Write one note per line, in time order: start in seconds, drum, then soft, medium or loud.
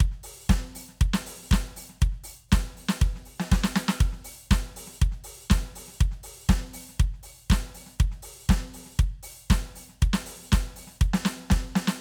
0.01 kick loud
0.01 closed hi-hat soft
0.12 snare soft
0.24 open hi-hat loud
0.47 kick loud
0.47 snare loud
0.47 closed hi-hat medium
0.47 hi-hat pedal soft
0.66 snare soft
0.70 snare soft
0.76 open hi-hat loud
0.89 snare soft
0.97 hi-hat pedal soft
1.01 kick loud
1.01 closed hi-hat soft
1.14 snare loud
1.27 open hi-hat loud
1.50 kick loud
1.50 snare loud
1.50 hi-hat pedal soft
1.54 closed hi-hat medium
1.77 open hi-hat loud
1.90 snare soft
1.98 snare soft
1.98 hi-hat pedal soft
2.02 kick loud
2.02 closed hi-hat soft
2.12 snare soft
2.24 open hi-hat loud
2.49 closed hi-hat medium
2.49 kick loud
2.49 snare loud
2.49 hi-hat pedal soft
2.60 snare soft
2.78 open hi-hat medium
2.89 snare loud
2.99 kick loud
2.99 hi-hat pedal soft
3.04 closed hi-hat soft
3.16 snare soft
3.26 open hi-hat medium
3.41 snare loud
3.48 hi-hat pedal soft
3.52 kick loud
3.52 snare loud
3.64 snare loud
3.76 snare loud
3.89 snare loud
3.97 hi-hat pedal soft
4.01 closed hi-hat medium
4.01 kick loud
4.13 snare soft
4.25 open hi-hat loud
4.47 hi-hat pedal soft
4.52 kick loud
4.52 snare loud
4.52 closed hi-hat medium
4.77 open hi-hat loud
4.88 snare soft
4.97 hi-hat pedal soft
5.02 kick loud
5.02 closed hi-hat soft
5.12 snare soft
5.24 open hi-hat loud
5.45 hi-hat pedal soft
5.51 kick loud
5.51 snare loud
5.51 closed hi-hat medium
5.58 snare soft
5.76 open hi-hat loud
5.88 snare soft
5.98 kick loud
5.98 closed hi-hat soft
5.98 hi-hat pedal soft
6.12 snare soft
6.24 open hi-hat loud
6.47 kick loud
6.47 snare loud
6.47 closed hi-hat medium
6.47 hi-hat pedal soft
6.58 snare soft
6.74 open hi-hat loud
6.89 snare soft
6.97 kick loud
6.97 closed hi-hat soft
6.97 hi-hat pedal soft
7.14 snare soft
7.24 open hi-hat loud
7.47 closed hi-hat medium
7.47 kick loud
7.47 hi-hat pedal soft
7.52 snare loud
7.67 snare soft
7.75 open hi-hat loud
7.87 snare soft
7.95 hi-hat pedal soft
8.00 kick loud
8.00 closed hi-hat soft
8.12 snare soft
8.23 open hi-hat loud
8.46 kick loud
8.46 hi-hat pedal soft
8.51 snare loud
8.51 closed hi-hat medium
8.58 snare soft
8.74 open hi-hat loud
8.86 snare soft
8.97 kick loud
8.97 closed hi-hat medium
8.97 hi-hat pedal soft
9.24 open hi-hat loud
9.48 kick loud
9.48 snare loud
9.48 hi-hat pedal soft
9.53 closed hi-hat medium
9.76 open hi-hat loud
9.90 snare soft
10.00 kick loud
10.00 closed hi-hat soft
10.00 hi-hat pedal soft
10.14 snare loud
10.27 open hi-hat loud
10.48 hi-hat pedal soft
10.53 closed hi-hat medium
10.53 kick loud
10.53 snare loud
10.77 open hi-hat loud
10.88 snare soft
10.96 hi-hat pedal soft
11.02 closed hi-hat medium
11.02 kick loud
11.14 snare loud
11.26 snare loud
11.49 kick loud
11.49 snare loud
11.49 hi-hat pedal soft
11.76 snare loud
11.88 snare loud